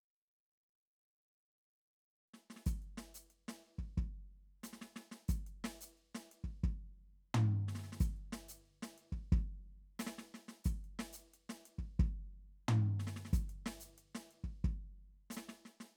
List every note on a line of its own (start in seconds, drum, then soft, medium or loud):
2.34 snare soft
2.50 snare soft
2.56 snare soft
2.66 kick medium
2.66 hi-hat pedal medium
2.82 open hi-hat soft
2.97 snare soft
3.14 hi-hat pedal medium
3.30 closed hi-hat soft
3.48 snare soft
3.66 closed hi-hat soft
3.78 kick soft
3.98 kick medium
4.63 snare soft
4.63 hi-hat pedal medium
4.73 snare soft
4.81 snare soft
4.96 snare soft
5.11 snare soft
5.28 kick medium
5.28 hi-hat pedal medium
5.47 closed hi-hat soft
5.64 snare medium
5.81 hi-hat pedal medium
5.97 closed hi-hat soft
6.15 snare soft
6.31 closed hi-hat soft
6.44 kick soft
6.64 kick medium
7.34 floor tom loud
7.68 snare soft
7.75 snare soft
7.78 snare soft
7.84 snare soft
7.92 snare soft
8.00 kick medium
8.00 hi-hat pedal medium
8.16 closed hi-hat soft
8.32 snare medium
8.48 hi-hat pedal medium
8.65 closed hi-hat soft
8.82 snare medium
8.98 closed hi-hat soft
9.12 kick soft
9.32 kick medium
9.99 snare medium
9.99 hi-hat pedal medium
10.07 snare medium
10.18 snare soft
10.34 snare soft
10.48 snare soft
10.64 kick medium
10.64 hi-hat pedal medium
10.84 closed hi-hat soft
10.99 snare medium
11.13 hi-hat pedal medium
11.34 closed hi-hat soft
11.49 snare soft
11.65 closed hi-hat soft
11.78 kick soft
11.99 kick medium
12.68 floor tom loud
12.99 snare soft
13.07 snare soft
13.16 snare soft
13.25 snare soft
13.33 kick medium
13.33 hi-hat pedal medium
13.49 closed hi-hat soft
13.66 snare medium
13.80 hi-hat pedal medium
13.98 closed hi-hat soft
14.15 snare medium
14.31 closed hi-hat soft
14.44 kick soft
14.64 kick medium
15.30 snare soft
15.30 hi-hat pedal medium
15.37 snare soft
15.49 snare soft
15.65 snare soft
15.80 snare soft